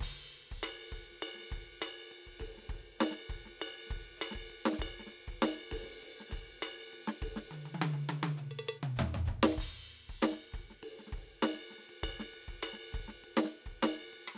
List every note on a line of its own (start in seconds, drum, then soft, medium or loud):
0.01 kick medium
0.01 hi-hat pedal medium
0.01 crash loud
0.14 kick soft
0.52 kick soft
0.57 kick soft
0.63 cross-stick medium
0.63 hi-hat pedal medium
0.63 ride bell loud
0.92 kick soft
0.92 ride medium
0.99 kick soft
1.11 snare soft
1.23 hi-hat pedal medium
1.23 ride bell loud
1.35 snare soft
1.39 snare soft
1.43 snare soft
1.51 kick soft
1.51 ride soft
1.58 kick soft
1.81 cross-stick medium
1.81 hi-hat pedal medium
1.81 ride bell loud
2.12 ride medium
2.27 kick soft
2.39 kick soft
2.39 snare soft
2.39 hi-hat pedal medium
2.39 ride medium
2.49 kick soft
2.58 snare soft
2.62 snare soft
2.65 snare soft
2.68 kick soft
2.68 snare soft
2.68 ride medium
2.81 kick soft
2.99 snare loud
2.99 hi-hat pedal medium
2.99 ride bell loud
3.11 snare soft
3.30 kick soft
3.30 ride medium
3.36 kick soft
3.46 snare soft
3.60 hi-hat pedal medium
3.60 ride bell loud
3.87 snare soft
3.91 kick medium
3.91 ride soft
3.98 kick soft
4.01 kick soft
4.18 hi-hat pedal medium
4.22 cross-stick medium
4.22 ride bell loud
4.31 snare soft
4.35 kick soft
4.40 kick soft
4.49 hi-hat pedal soft
4.49 ride soft
4.66 snare loud
4.73 snare soft
4.73 hi-hat pedal soft
4.79 kick medium
4.79 ride bell loud
4.86 kick soft
5.00 snare soft
5.07 snare soft
5.12 ride soft
5.28 kick soft
5.42 snare loud
5.42 hi-hat pedal medium
5.42 ride bell loud
5.72 kick soft
5.72 ride loud
5.79 kick soft
5.83 snare soft
6.02 hi-hat pedal soft
6.02 ride soft
6.20 snare soft
6.30 kick soft
6.30 snare soft
6.30 ride bell medium
6.39 kick soft
6.62 cross-stick medium
6.62 hi-hat pedal medium
6.62 ride bell loud
6.94 ride soft
7.08 snare medium
7.22 kick medium
7.22 ride loud
7.29 kick soft
7.32 kick soft
7.36 snare medium
7.51 hi-hat pedal medium
7.51 high tom medium
7.66 high tom medium
7.75 high tom medium
7.82 hi-hat pedal loud
7.82 high tom loud
7.94 high tom medium
8.09 hi-hat pedal medium
8.09 high tom medium
8.23 high tom loud
8.37 hi-hat pedal loud
8.37 mid tom soft
8.51 percussion medium
8.59 percussion loud
8.67 hi-hat pedal medium
8.67 percussion loud
8.83 mid tom loud
8.96 kick soft
8.96 hi-hat pedal medium
8.96 floor tom loud
9.15 floor tom medium
9.26 kick soft
9.26 floor tom medium
9.26 hi-hat pedal medium
9.35 kick soft
9.43 snare loud
9.52 cross-stick soft
9.58 kick medium
9.58 hi-hat pedal medium
9.58 crash loud
9.72 kick soft
10.10 kick soft
10.22 snare loud
10.22 hi-hat pedal medium
10.22 ride bell loud
10.32 snare soft
10.53 kick soft
10.53 ride soft
10.61 kick soft
10.71 snare soft
10.83 ride loud
10.99 snare soft
11.07 snare soft
11.13 kick soft
11.13 ride soft
11.19 kick soft
11.43 snare loud
11.43 hi-hat pedal medium
11.43 ride bell loud
11.54 snare soft
11.69 snare soft
11.69 hi-hat pedal soft
11.74 ride soft
11.79 snare soft
11.84 snare soft
11.88 snare soft
11.88 ride medium
11.92 snare soft
12.02 kick soft
12.02 hi-hat pedal soft
12.02 ride bell loud
12.10 kick soft
12.20 snare soft
12.34 ride soft
12.48 kick soft
12.63 cross-stick medium
12.63 hi-hat pedal medium
12.63 ride bell loud
12.73 snare soft
12.93 kick medium
12.93 ride medium
13.02 kick soft
13.08 snare soft
13.24 ride medium
13.37 snare loud
13.45 snare soft
13.54 ride soft
13.66 kick soft
13.82 snare loud
13.82 hi-hat pedal medium
13.82 ride bell loud
14.13 ride soft
14.28 cross-stick medium
14.35 snare soft